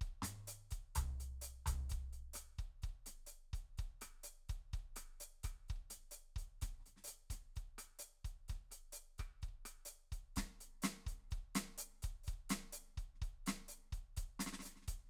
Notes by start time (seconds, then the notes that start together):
0.01 closed hi-hat, kick
0.07 kick
0.23 closed hi-hat, snare, mid tom
0.48 closed hi-hat, hi-hat pedal
0.71 closed hi-hat, kick
0.96 closed hi-hat, kick, floor tom
1.20 closed hi-hat
1.42 closed hi-hat, hi-hat pedal
1.66 closed hi-hat, kick, floor tom
1.74 kick
1.90 closed hi-hat, kick
1.99 snare
2.13 closed hi-hat
2.34 closed hi-hat, cross-stick, hi-hat pedal
2.59 closed hi-hat, kick
2.83 closed hi-hat, kick
2.89 kick
3.06 closed hi-hat, snare
3.27 hi-hat pedal
3.31 closed hi-hat
3.54 closed hi-hat, kick
3.78 closed hi-hat, kick
4.02 closed hi-hat, cross-stick, snare
4.24 closed hi-hat, hi-hat pedal
4.49 closed hi-hat, kick
4.73 closed hi-hat, kick
4.79 kick
4.96 closed hi-hat, cross-stick, snare
5.21 hi-hat pedal
5.44 closed hi-hat, kick, cross-stick, snare
5.69 closed hi-hat, kick
5.76 kick
5.90 closed hi-hat, snare
6.12 hi-hat pedal
6.16 closed hi-hat
6.36 closed hi-hat, kick
6.42 kick
6.62 closed hi-hat, kick, snare
6.69 kick
6.80 snare, mid tom
6.86 closed hi-hat, snare
6.96 snare
7.04 closed hi-hat, hi-hat pedal
7.30 closed hi-hat, kick, snare
7.56 closed hi-hat, kick
7.78 closed hi-hat, cross-stick, snare
7.99 closed hi-hat, hi-hat pedal
8.25 closed hi-hat, kick
8.49 closed hi-hat, kick, snare
8.55 kick
8.72 closed hi-hat, cross-stick
8.93 closed hi-hat, hi-hat pedal
9.19 closed hi-hat, kick, cross-stick
9.42 closed hi-hat, kick
9.49 kick
9.66 closed hi-hat, cross-stick
9.86 hi-hat pedal
9.90 closed hi-hat
10.12 closed hi-hat, kick
10.36 closed hi-hat, kick, snare
10.43 kick
10.61 closed hi-hat
10.83 closed hi-hat, snare, hi-hat pedal
11.07 closed hi-hat, kick
11.12 kick
11.31 closed hi-hat, kick
11.38 kick
11.55 closed hi-hat, snare
11.78 closed hi-hat, hi-hat pedal
12.03 closed hi-hat, kick
12.10 kick
12.24 closed hi-hat, hi-hat pedal
12.28 kick
12.34 kick
12.50 closed hi-hat, snare
12.73 closed hi-hat, hi-hat pedal
12.98 closed hi-hat, kick
13.15 snare
13.22 closed hi-hat, kick
13.47 closed hi-hat, snare
13.69 closed hi-hat, hi-hat pedal
13.93 closed hi-hat, kick
13.98 kick
14.17 closed hi-hat, kick
14.23 kick
14.40 closed hi-hat, snare
14.47 snare
14.53 snare
14.60 snare, hi-hat pedal
14.66 closed hi-hat, snare
14.71 snare
14.76 snare
14.82 snare
14.88 closed hi-hat, kick, snare
14.94 kick, snare
14.98 snare
15.05 snare